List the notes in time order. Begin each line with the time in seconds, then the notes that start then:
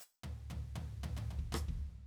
0.00 percussion
0.23 floor tom, high tom
0.50 floor tom, high tom
0.75 floor tom, high tom
1.03 floor tom, high tom
1.16 floor tom, high tom
1.30 floor tom
1.38 kick
1.52 cross-stick, floor tom
1.68 kick